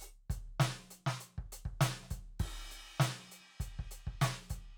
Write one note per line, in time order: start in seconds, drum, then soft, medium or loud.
0.01 open hi-hat medium
0.01 hi-hat pedal medium
0.30 closed hi-hat medium
0.30 kick medium
0.47 kick soft
0.60 closed hi-hat medium
0.60 snare loud
0.91 closed hi-hat medium
1.06 snare loud
1.20 closed hi-hat medium
1.38 kick medium
1.52 closed hi-hat medium
1.65 kick medium
1.81 closed hi-hat loud
1.81 snare loud
2.02 snare soft
2.10 closed hi-hat medium
2.10 kick medium
2.40 kick medium
2.40 crash medium
2.71 closed hi-hat medium
3.00 closed hi-hat medium
3.00 snare loud
3.31 closed hi-hat medium
3.60 closed hi-hat medium
3.60 kick medium
3.79 kick medium
3.91 closed hi-hat medium
4.07 kick medium
4.21 closed hi-hat medium
4.21 snare loud
4.50 closed hi-hat medium
4.50 kick medium